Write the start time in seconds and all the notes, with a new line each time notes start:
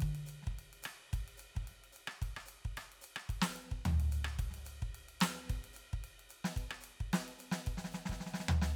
0.01 kick, ride
0.15 ride
0.26 hi-hat pedal, ride
0.43 snare
0.47 kick, snare
0.57 snare, ride
0.61 snare
0.73 ride
0.83 cross-stick, hi-hat pedal, ride
1.13 kick, snare, ride
1.21 kick
1.28 ride
1.38 hi-hat pedal, ride
1.55 kick, snare
1.60 kick, snare
1.64 snare, ride
1.84 ride
1.93 hi-hat pedal, ride
2.08 cross-stick
2.22 kick, ride
2.37 cross-stick
2.46 hi-hat pedal, ride
2.65 kick
2.77 cross-stick, ride
2.92 ride
3.02 hi-hat pedal, ride
3.16 cross-stick
3.29 kick, ride
3.42 snare
3.52 hi-hat pedal, ride
3.72 kick
3.86 floor tom, ride
4.00 ride
4.12 hi-hat pedal, ride
4.25 cross-stick
4.39 kick, ride
4.51 snare, ride
4.56 snare
4.60 snare
4.64 snare, hi-hat pedal, ride
4.82 kick
4.95 ride
5.09 ride
5.21 snare, hi-hat pedal, ride
5.50 kick, snare, ride
5.65 snare, ride
5.74 hi-hat pedal, ride
5.93 kick
6.04 ride
6.20 ride
6.29 hi-hat pedal, ride
6.45 snare
6.57 kick, ride
6.71 cross-stick
6.81 hi-hat pedal, ride
7.01 kick
7.13 snare, ride
7.28 ride
7.39 hi-hat pedal, ride
7.52 snare
7.67 kick, ride
7.78 snare
7.85 snare
7.92 snare, hi-hat pedal
8.06 kick, snare
8.12 snare
8.21 snare
8.26 snare
8.33 snare
8.40 snare
8.49 hi-hat pedal, floor tom
8.62 snare